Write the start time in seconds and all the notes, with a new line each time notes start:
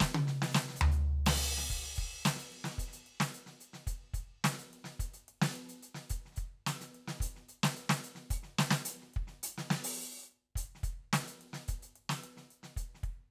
0.01 kick, snare
0.15 high tom
0.28 snare
0.43 snare
0.52 snare, hi-hat pedal
0.69 snare
0.74 snare, hi-hat pedal
0.79 kick, floor tom
0.93 hi-hat pedal
1.27 snare, crash
1.35 snare
1.40 closed hi-hat
1.59 snare
1.71 closed hi-hat, kick
1.76 kick
1.83 snare
1.91 snare
1.96 closed hi-hat, kick
2.07 kick
2.26 closed hi-hat, snare
2.36 closed hi-hat, snare
2.53 closed hi-hat
2.65 snare
2.72 snare
2.79 closed hi-hat, kick
2.89 snare
2.93 closed hi-hat, snare
2.96 snare
3.00 snare
3.03 snare
3.07 closed hi-hat
3.21 snare
3.35 closed hi-hat
3.47 snare
3.61 closed hi-hat, hi-hat pedal
3.74 snare
3.88 closed hi-hat, kick
3.96 kick
4.04 snare
4.14 closed hi-hat, kick
4.20 kick
4.23 kick
4.45 closed hi-hat, snare
4.53 snare
4.60 open hi-hat
4.74 closed hi-hat
4.85 snare
5.00 closed hi-hat, kick, snare
5.06 kick, snare
5.13 closed hi-hat, snare
5.16 snare
5.29 closed hi-hat
5.42 snare
5.52 hi-hat pedal
5.56 closed hi-hat
5.70 closed hi-hat
5.83 closed hi-hat
5.95 snare
6.10 closed hi-hat, kick
6.17 kick
6.26 snare
6.33 snare
6.36 closed hi-hat, kick, snare
6.39 snare
6.67 closed hi-hat, snare
6.82 open hi-hat, snare
6.95 closed hi-hat
7.08 snare
7.21 closed hi-hat, kick
7.27 kick
7.37 snare
7.49 closed hi-hat
7.64 snare
7.77 closed hi-hat
7.90 snare
8.05 closed hi-hat
8.16 snare
8.31 open hi-hat, kick, hi-hat pedal
8.37 kick
8.44 snare
8.59 snare
8.71 snare
8.82 closed hi-hat, hi-hat pedal
9.02 snare
9.14 kick, closed hi-hat
9.23 kick
9.28 snare
9.44 closed hi-hat
9.59 snare
9.71 snare
9.85 open hi-hat
10.23 hi-hat pedal
10.32 closed hi-hat
10.56 closed hi-hat, kick
10.62 kick
10.65 kick
10.76 snare
10.79 snare
10.83 closed hi-hat, kick, snare
10.91 kick
10.93 kick
11.05 kick
11.14 closed hi-hat, snare
11.24 closed hi-hat, snare
11.42 closed hi-hat
11.54 snare
11.69 closed hi-hat, kick
11.75 kick
11.83 closed hi-hat
11.96 closed hi-hat
12.10 snare
12.24 closed hi-hat
12.38 snare
12.51 open hi-hat
12.64 snare
12.77 closed hi-hat, kick
12.95 snare
13.04 kick, snare, closed hi-hat